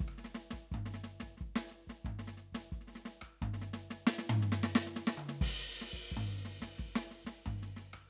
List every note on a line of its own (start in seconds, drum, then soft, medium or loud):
0.01 kick medium
0.01 snare soft
0.07 kick soft
0.07 cross-stick soft
0.13 snare soft
0.18 snare soft
0.25 snare soft
0.35 snare medium
0.51 kick soft
0.51 snare medium
0.72 kick soft
0.72 floor tom medium
0.86 snare soft
0.94 snare soft
1.03 snare soft
1.03 hi-hat pedal medium
1.20 kick soft
1.20 snare medium
1.37 kick soft
1.37 snare soft
1.56 snare medium
1.67 snare soft
1.67 hi-hat pedal medium
1.87 kick soft
1.87 snare soft
2.05 kick soft
2.05 floor tom medium
2.19 snare soft
2.28 snare soft
2.37 snare soft
2.37 hi-hat pedal medium
2.53 kick soft
2.53 snare medium
2.72 kick soft
2.72 snare soft
2.81 snare soft
2.87 snare soft
2.96 snare soft
3.03 snare soft
3.03 hi-hat pedal medium
3.22 kick soft
3.22 cross-stick medium
3.42 kick soft
3.42 floor tom medium
3.54 snare soft
3.62 snare soft
3.74 snare medium
3.74 hi-hat pedal soft
3.91 snare medium
4.07 snare loud
4.19 snare medium
4.30 floor tom loud
4.42 snare soft
4.52 snare medium
4.63 snare medium
4.75 snare loud
4.87 snare soft
4.96 snare medium
5.07 snare loud
5.18 mid tom medium
5.29 snare medium
5.41 kick medium
5.41 crash loud
5.82 snare soft
5.94 kick soft
6.12 kick soft
6.17 floor tom loud
6.43 snare soft
6.43 hi-hat pedal soft
6.61 kick soft
6.61 snare medium
6.78 kick soft
6.78 snare soft
6.96 snare medium
7.09 snare soft
7.09 hi-hat pedal soft
7.25 kick soft
7.25 snare medium
7.46 kick soft
7.46 floor tom medium
7.63 snare soft
7.77 snare soft
7.77 hi-hat pedal medium
7.94 kick soft
7.94 cross-stick medium